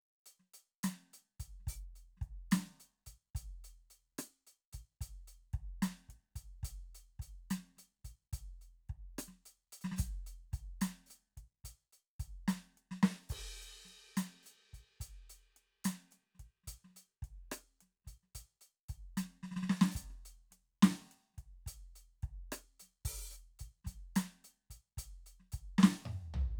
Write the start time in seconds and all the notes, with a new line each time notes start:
0.26 closed hi-hat
0.40 snare
0.54 closed hi-hat
0.84 closed hi-hat, snare
1.14 closed hi-hat
1.40 closed hi-hat, kick
1.60 snare
1.67 open hi-hat, kick
1.96 closed hi-hat
2.17 snare
2.22 kick, closed hi-hat
2.52 closed hi-hat, snare
2.80 closed hi-hat
3.07 closed hi-hat, kick
3.35 closed hi-hat, kick
3.41 kick
3.65 closed hi-hat
3.91 closed hi-hat
4.19 closed hi-hat, cross-stick
4.47 closed hi-hat
4.73 closed hi-hat, kick, snare
5.01 closed hi-hat, kick
5.28 closed hi-hat
5.54 kick, snare, closed hi-hat
5.83 closed hi-hat, snare
6.09 kick, closed hi-hat
6.36 closed hi-hat, kick
6.63 closed hi-hat, kick
6.95 closed hi-hat
7.20 closed hi-hat, kick
7.51 closed hi-hat, snare
7.77 closed hi-hat, snare
8.05 closed hi-hat, kick
8.33 closed hi-hat, kick
8.62 closed hi-hat
8.89 kick, closed hi-hat
9.19 closed hi-hat, cross-stick
9.28 snare
9.46 closed hi-hat
9.73 closed hi-hat
9.81 open hi-hat, snare
9.92 snare
9.97 closed hi-hat, kick, snare, hi-hat pedal
10.06 kick
10.27 closed hi-hat
10.52 closed hi-hat, kick, snare
10.82 closed hi-hat, snare
11.07 closed hi-hat, hi-hat pedal
11.37 kick, closed hi-hat
11.65 closed hi-hat, kick
11.93 closed hi-hat
12.20 closed hi-hat, kick
12.48 closed hi-hat, snare
12.78 closed hi-hat
12.91 snare
13.03 snare
13.30 kick, hi-hat pedal, crash
13.36 kick
13.62 closed hi-hat
13.85 snare, closed hi-hat
14.17 closed hi-hat, snare
14.43 closed hi-hat, hi-hat pedal
14.74 closed hi-hat, kick
15.01 closed hi-hat, kick
15.30 closed hi-hat
15.57 closed hi-hat
15.85 closed hi-hat, snare
16.11 snare, closed hi-hat, hi-hat pedal
16.35 snare
16.40 kick, closed hi-hat
16.64 closed hi-hat, kick, snare
16.85 snare
16.90 snare
16.95 closed hi-hat, snare
17.23 kick, closed hi-hat
17.52 closed hi-hat, cross-stick
17.81 snare, closed hi-hat
18.05 closed hi-hat, kick, snare
18.23 snare
18.35 closed hi-hat, kick
18.61 closed hi-hat
18.89 closed hi-hat, kick
19.18 closed hi-hat, snare
19.43 snare
19.52 snare
19.57 snare
19.63 snare
19.70 snare
19.82 snare
19.92 kick, hi-hat pedal
19.97 closed hi-hat
20.02 kick
20.10 cross-stick
20.26 closed hi-hat
20.51 snare, closed hi-hat
20.83 open hi-hat, snare, hi-hat pedal
21.12 closed hi-hat
21.34 snare
21.38 kick, snare, closed hi-hat
21.67 closed hi-hat, kick, hi-hat pedal
21.96 closed hi-hat
22.23 kick, closed hi-hat
22.52 closed hi-hat, cross-stick
22.80 closed hi-hat, snare
23.05 open hi-hat, kick
23.31 closed hi-hat, hi-hat pedal
23.60 closed hi-hat, kick
23.85 closed hi-hat, kick, snare
24.16 closed hi-hat, snare
24.45 closed hi-hat
24.70 closed hi-hat, kick
24.98 closed hi-hat, kick
25.27 closed hi-hat
25.40 snare
25.52 closed hi-hat, kick
25.79 snare
25.84 snare
25.92 snare
26.06 mid tom
26.25 snare
26.34 floor tom